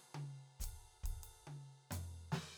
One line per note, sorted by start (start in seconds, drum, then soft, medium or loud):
0.15 high tom medium
0.60 kick soft
0.60 hi-hat pedal medium
0.65 ride medium
1.04 kick soft
1.04 ride medium
1.24 ride medium
1.48 high tom medium
1.92 floor tom medium
1.92 hi-hat pedal medium
1.92 ride medium
2.33 snare medium
2.33 crash medium